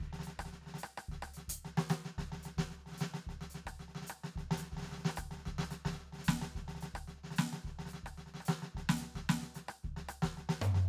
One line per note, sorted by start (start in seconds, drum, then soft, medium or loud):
0.01 kick soft
0.01 snare soft
0.07 kick soft
0.13 snare soft
0.20 snare soft
0.20 hi-hat pedal soft
0.28 snare soft
0.40 kick soft
0.40 cross-stick medium
0.46 snare soft
0.53 snare soft
0.62 snare soft
0.67 snare soft
0.75 snare soft
0.79 hi-hat pedal medium
0.84 cross-stick medium
0.98 cross-stick medium
1.09 kick soft
1.09 snare soft
1.15 kick soft
1.23 cross-stick medium
1.28 cross-stick soft
1.34 snare soft
1.34 hi-hat pedal medium
1.49 closed hi-hat loud
1.49 kick soft
1.65 snare soft
1.78 snare medium
1.90 snare medium
1.90 hi-hat pedal medium
2.05 snare soft
2.19 kick soft
2.19 snare medium
2.32 snare soft
2.38 snare soft
2.44 snare soft
2.44 hi-hat pedal medium
2.58 kick soft
2.58 snare medium
2.71 snare soft
2.79 snare soft
2.86 snare soft
2.92 snare soft
2.97 snare soft
2.97 hi-hat pedal medium
3.01 snare medium
3.14 snare medium
3.27 kick soft
3.27 snare soft
3.35 kick soft
3.42 snare soft
3.51 hi-hat pedal medium
3.55 snare soft
3.66 kick soft
3.66 cross-stick medium
3.80 snare soft
3.89 snare soft
3.96 snare soft
4.02 snare soft
4.07 cross-stick medium
4.07 hi-hat pedal medium
4.24 snare medium
4.36 kick soft
4.36 snare soft
4.43 kick soft
4.51 snare medium
4.57 snare soft
4.57 hi-hat pedal medium
4.63 snare soft
4.72 kick soft
4.72 snare soft
4.77 snare medium
4.82 snare medium
4.87 snare soft
4.92 snare soft
4.99 snare soft
5.05 snare medium
5.10 cross-stick medium
5.17 kick soft
5.17 cross-stick medium
5.17 hi-hat pedal medium
5.25 kick soft
5.32 snare soft
5.38 snare soft
5.46 kick soft
5.46 snare soft
5.55 kick soft
5.59 snare medium
5.64 cross-stick medium
5.71 snare soft
5.71 hi-hat pedal soft
5.86 kick soft
5.86 snare medium
5.93 snare soft
5.98 snare soft
6.06 snare soft
6.12 snare soft
6.19 snare soft
6.25 kick soft
6.25 snare loud
6.25 hi-hat pedal medium
6.34 kick soft
6.42 snare medium
6.56 kick soft
6.56 snare soft
6.62 kick soft
6.69 snare soft
6.76 snare soft
6.81 snare soft
6.81 hi-hat pedal soft
6.95 kick soft
6.95 cross-stick medium
7.00 kick soft
7.08 snare soft
7.16 snare soft
7.22 snare soft
7.24 snare soft
7.31 snare soft
7.37 snare medium
7.37 hi-hat pedal medium
7.53 snare soft
7.65 kick soft
7.65 snare soft
7.71 kick soft
7.79 snare soft
7.86 snare soft
7.86 hi-hat pedal soft
7.94 snare soft
8.04 kick soft
8.04 cross-stick medium
8.18 snare soft
8.27 snare soft
8.34 snare soft
8.41 cross-stick soft
8.46 snare medium
8.46 hi-hat pedal medium
8.63 snare soft
8.75 kick soft
8.75 snare soft
8.81 kick soft
8.90 snare loud
8.97 hi-hat pedal medium
9.02 snare soft
9.16 kick soft
9.16 snare soft
9.30 snare loud
9.43 snare soft
9.55 snare soft
9.55 hi-hat pedal soft
9.69 cross-stick medium
9.84 kick soft
9.84 snare soft
9.92 kick soft
9.97 snare soft
10.09 cross-stick medium
10.09 hi-hat pedal medium
10.23 kick soft
10.23 snare medium
10.38 snare soft
10.50 snare medium
10.62 floor tom loud
10.62 hi-hat pedal medium
10.75 snare soft